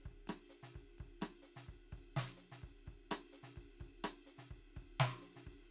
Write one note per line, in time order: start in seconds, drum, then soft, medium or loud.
0.01 hi-hat pedal soft
0.01 ride soft
0.06 kick soft
0.11 kick soft
0.27 cross-stick medium
0.27 ride medium
0.50 hi-hat pedal medium
0.63 snare soft
0.74 kick soft
0.74 ride soft
0.81 kick soft
0.98 kick soft
0.98 ride soft
1.06 kick soft
1.22 cross-stick medium
1.22 ride medium
1.42 hi-hat pedal medium
1.56 snare soft
1.66 kick soft
1.66 ride soft
1.73 kick soft
1.92 kick soft
1.92 ride soft
1.98 kick soft
2.16 snare medium
2.16 ride medium
2.37 hi-hat pedal medium
2.52 snare soft
2.62 kick soft
2.62 ride soft
2.68 kick soft
2.87 kick soft
2.87 ride soft
2.93 kick soft
3.11 cross-stick medium
3.11 ride medium
3.33 hi-hat pedal medium
3.43 snare soft
3.56 kick soft
3.56 ride soft
3.62 kick soft
3.80 kick soft
3.80 ride soft
3.86 kick soft
4.04 cross-stick medium
4.04 ride medium
4.26 hi-hat pedal medium
4.38 snare soft
4.51 kick soft
4.51 ride soft
4.56 kick soft
4.76 kick soft
4.76 ride soft
4.82 kick soft
5.00 snare medium
5.00 ride medium
5.22 hi-hat pedal medium
5.36 snare soft
5.47 kick soft
5.47 ride soft
5.52 kick soft
5.62 snare soft